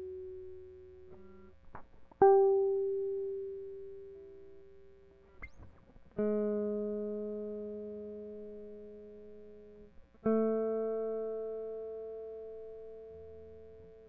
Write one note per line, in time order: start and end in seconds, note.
2.22 4.81 G4
6.20 9.45 G#3
10.27 13.86 A3